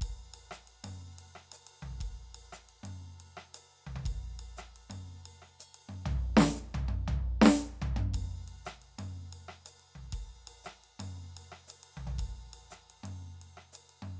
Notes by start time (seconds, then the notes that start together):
0.01 kick, ride
0.34 ride
0.51 cross-stick, hi-hat pedal
0.67 ride
0.84 mid tom, ride
1.18 ride
1.35 cross-stick
1.52 hi-hat pedal, ride
1.67 ride
1.82 floor tom
2.00 kick, ride
2.16 ride
2.34 ride
2.52 cross-stick, hi-hat pedal
2.69 ride
2.83 mid tom, ride
3.20 ride
3.37 cross-stick
3.54 hi-hat pedal, ride
3.86 floor tom
3.96 floor tom
4.05 kick, ride
4.39 ride
4.57 cross-stick, hi-hat pedal
4.76 ride
4.90 mid tom, ride
5.25 ride
5.42 cross-stick
5.59 hi-hat pedal, ride bell
5.74 ride
5.89 mid tom
6.06 floor tom
6.37 snare
6.40 snare
6.55 hi-hat pedal
6.74 floor tom
6.88 mid tom
7.08 floor tom
7.41 snare
7.46 snare
7.60 hi-hat pedal
7.82 floor tom
7.96 mid tom
8.14 kick, ride
8.48 ride
8.65 cross-stick, hi-hat pedal
8.82 ride
8.98 mid tom, ride
9.33 ride
9.48 cross-stick
9.65 hi-hat pedal, ride
9.80 ride
9.95 floor tom
10.12 kick, ride
10.47 ride
10.64 cross-stick, hi-hat pedal
10.84 ride
10.99 mid tom, ride
11.37 ride
11.52 cross-stick
11.67 hi-hat pedal, ride
11.83 ride
11.97 floor tom
12.07 floor tom
12.18 kick, ride
12.53 ride
12.70 cross-stick, hi-hat pedal
12.90 ride
13.03 mid tom, ride
13.41 ride
13.57 cross-stick
13.72 hi-hat pedal, ride
13.89 ride
14.02 mid tom